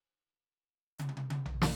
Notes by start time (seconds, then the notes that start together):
0.99 hi-hat pedal, high tom
1.09 high tom
1.17 high tom
1.30 high tom
1.46 floor tom
1.62 snare, crash